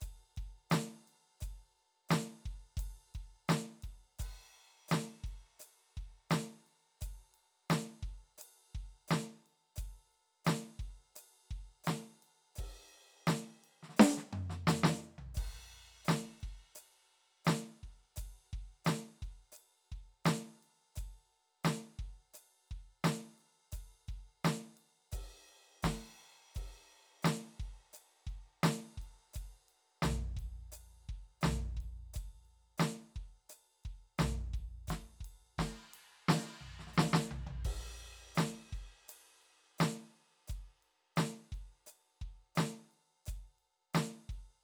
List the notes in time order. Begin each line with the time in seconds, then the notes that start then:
0.01 kick, hi-hat pedal, ride
0.37 kick, ride
0.70 snare, hi-hat pedal, ride
1.08 ride
1.41 kick, hi-hat pedal, ride
1.77 ride
2.09 snare, hi-hat pedal, ride
2.46 kick, ride
2.77 kick, hi-hat pedal, ride
3.15 kick, ride
3.49 snare, hi-hat pedal, ride
3.83 kick, ride
4.19 kick, hi-hat pedal, crash
4.89 snare, hi-hat pedal, ride
5.24 kick, ride
5.60 hi-hat pedal, ride
5.97 kick, ride
6.30 snare, hi-hat pedal, ride
6.67 ride
7.01 kick, hi-hat pedal, ride
7.34 ride
7.70 snare, hi-hat pedal, ride
8.03 kick, ride
8.38 hi-hat pedal, ride
8.73 kick, ride
9.08 snare, hi-hat pedal, ride
9.46 ride
9.76 kick, hi-hat pedal, ride
10.11 ride
10.45 snare, hi-hat pedal, ride
10.80 kick, ride
11.16 hi-hat pedal, ride
11.51 kick, ride
11.84 snare, hi-hat pedal, ride
12.23 ride
12.56 kick, hi-hat pedal, crash
12.89 ride
13.27 snare, hi-hat pedal, ride
13.64 ride
13.83 snare
13.90 snare
13.95 snare, hi-hat pedal
14.00 snare
14.18 snare
14.33 mid tom
14.50 snare
14.68 snare, hi-hat pedal
14.84 snare
15.19 floor tom
15.35 kick, hi-hat pedal, crash
16.05 snare, hi-hat pedal
16.10 ride
16.41 kick, ride
16.76 hi-hat pedal, ride
17.45 snare, hi-hat pedal, ride
17.83 kick
18.16 kick, hi-hat pedal, ride
18.53 kick, ride
18.85 snare, hi-hat pedal, ride
19.23 kick, ride
19.52 hi-hat pedal
19.57 ride
19.92 kick, ride
20.25 snare, hi-hat pedal, ride
20.63 ride
20.96 kick, hi-hat pedal, ride
21.64 snare, hi-hat pedal, ride
21.99 kick
22.34 hi-hat pedal, ride
22.69 kick, ride
23.04 snare, hi-hat pedal, ride
23.38 ride
23.72 kick, hi-hat pedal, ride
24.09 kick, ride
24.45 snare, hi-hat pedal, ride
24.77 ride
25.12 kick, hi-hat pedal, crash
25.48 ride
25.83 kick, snare, hi-hat pedal, crash
26.21 ride
26.55 kick, hi-hat pedal, crash
27.23 snare, hi-hat pedal, ride
27.60 kick, ride
27.93 hi-hat pedal, ride
28.27 kick, ride
28.64 snare, hi-hat pedal, ride
28.98 kick
29.02 ride
29.34 kick, hi-hat pedal, ride
29.69 ride
30.03 snare, floor tom, hi-hat pedal
30.37 kick, ride
30.72 hi-hat pedal, ride
31.07 kick, ride
31.41 snare, floor tom, hi-hat pedal
31.77 kick, ride
32.14 kick, hi-hat pedal, ride
32.45 ride
32.78 snare, hi-hat pedal, ride
33.16 kick
33.50 hi-hat pedal, ride
33.84 kick, ride
34.19 snare, floor tom, hi-hat pedal
34.54 kick, ride
34.88 kick, snare, hi-hat pedal, ride
35.21 kick
35.25 ride
35.59 kick, snare, ride
35.94 ride
36.29 snare, hi-hat pedal, ride
36.61 floor tom
36.80 snare
36.87 snare
36.94 snare, hi-hat pedal
36.98 snare
37.14 snare
37.31 floor tom
37.47 floor tom
37.65 kick, crash
37.98 ride
38.35 snare, hi-hat pedal, ride
38.73 kick, ride
39.09 hi-hat pedal, ride
39.42 ride
39.79 snare, hi-hat pedal, ride
40.48 kick, hi-hat pedal, ride
40.83 ride
41.17 snare, hi-hat pedal, ride
41.52 kick, ride
41.87 hi-hat pedal, ride
42.22 kick, ride
42.56 snare, hi-hat pedal, ride
42.91 ride
43.26 kick, hi-hat pedal, ride
43.59 ride
43.94 snare, hi-hat pedal, ride
44.30 kick, ride